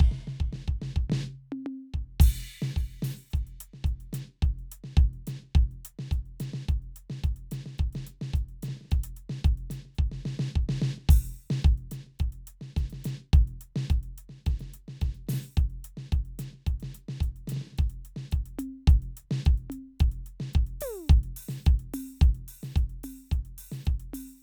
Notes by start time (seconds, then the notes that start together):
0.01 kick, ride
0.13 snare
0.29 snare, floor tom
0.42 kick
0.55 snare, floor tom
0.70 kick
0.84 snare, floor tom
0.98 kick
1.12 snare, floor tom
1.54 high tom
1.68 high tom
1.96 kick
2.22 open hi-hat, kick, crash
2.64 snare
2.78 kick, open hi-hat
2.92 open hi-hat
3.04 open hi-hat, snare
3.18 snare
3.32 kick, hi-hat pedal
3.37 closed hi-hat
3.49 closed hi-hat
3.62 closed hi-hat
3.76 snare
3.86 kick, closed hi-hat
4.02 closed hi-hat
4.15 closed hi-hat, snare
4.32 snare
4.44 kick, snare, closed hi-hat
4.61 closed hi-hat
4.74 closed hi-hat
4.86 snare
4.99 kick, closed hi-hat
5.15 closed hi-hat
5.29 closed hi-hat, snare
5.45 snare
5.57 kick, closed hi-hat
5.73 closed hi-hat
5.87 closed hi-hat
6.01 snare
6.13 kick, closed hi-hat
6.28 closed hi-hat
6.42 closed hi-hat, snare
6.56 snare
6.71 kick, closed hi-hat
6.84 closed hi-hat
6.98 closed hi-hat
7.12 snare
7.26 kick, closed hi-hat
7.38 closed hi-hat
7.53 closed hi-hat, snare
7.68 snare
7.80 kick, closed hi-hat
7.95 snare, closed hi-hat
8.09 closed hi-hat
8.23 snare
8.36 kick, closed hi-hat
8.51 closed hi-hat
8.65 closed hi-hat, snare
8.70 snare
8.79 snare
8.83 snare
8.87 snare
8.91 kick, snare, closed hi-hat
8.96 snare
9.00 snare
9.06 closed hi-hat
9.19 closed hi-hat
9.32 snare
9.46 kick, closed hi-hat
9.59 closed hi-hat
9.72 open hi-hat, snare
9.87 snare
9.97 kick, hi-hat pedal
10.14 snare
10.27 snare
10.41 snare
10.58 kick
10.71 snare
10.82 kick, snare
11.00 snare
11.11 open hi-hat, kick
11.52 snare
11.63 kick, hi-hat pedal
11.68 closed hi-hat
11.80 closed hi-hat
11.93 closed hi-hat, snare
12.09 snare
12.21 kick, closed hi-hat
12.34 closed hi-hat
12.49 closed hi-hat
12.63 snare
12.78 kick, snare, closed hi-hat
12.92 snare, closed hi-hat
13.04 open hi-hat, kick, snare
13.35 kick, closed hi-hat
13.49 closed hi-hat
13.63 closed hi-hat
13.78 snare
13.92 kick, closed hi-hat
14.05 closed hi-hat
14.20 closed hi-hat
14.31 snare
14.48 kick, snare, closed hi-hat
14.61 snare, closed hi-hat
14.76 closed hi-hat, kick
14.90 snare
15.03 kick, snare, closed hi-hat
15.16 closed hi-hat
15.29 open hi-hat, kick, snare
15.35 snare
15.56 kick, closed hi-hat, hi-hat pedal
15.72 closed hi-hat
15.86 closed hi-hat
15.99 snare
16.14 kick, closed hi-hat
16.27 closed hi-hat
16.41 closed hi-hat, snare
16.55 snare
16.69 kick, closed hi-hat
16.82 snare, closed hi-hat
16.97 closed hi-hat
17.11 snare
17.22 kick, closed hi-hat
17.38 closed hi-hat
17.50 closed hi-hat, snare
17.54 snare
17.58 snare
17.63 snare
17.69 snare
17.75 snare
17.80 kick, snare, closed hi-hat
17.92 closed hi-hat
18.07 closed hi-hat
18.18 snare
18.34 kick, closed hi-hat
18.48 closed hi-hat
18.61 kick, closed hi-hat, high tom
18.89 kick, closed hi-hat
19.04 closed hi-hat
19.19 kick, closed hi-hat
19.33 snare
19.47 kick, closed hi-hat
19.59 closed hi-hat
19.72 kick, closed hi-hat, high tom
20.02 kick, closed hi-hat
20.14 closed hi-hat
20.28 closed hi-hat
20.42 snare
20.55 kick, closed hi-hat
20.69 closed hi-hat
20.83 open hi-hat, high tom
21.10 kick, closed hi-hat, hi-hat pedal
21.25 closed hi-hat
21.38 open hi-hat
21.51 snare
21.66 kick, closed hi-hat, hi-hat pedal
21.81 closed hi-hat
21.96 open hi-hat, high tom
22.21 kick, closed hi-hat, hi-hat pedal
22.37 closed hi-hat
22.50 open hi-hat
22.65 snare
22.76 kick, closed hi-hat, hi-hat pedal
22.91 closed hi-hat
23.05 open hi-hat, high tom
23.32 kick, closed hi-hat, hi-hat pedal
23.47 closed hi-hat
23.60 open hi-hat
23.74 snare
23.86 kick, closed hi-hat, hi-hat pedal
24.02 closed hi-hat
24.16 open hi-hat, high tom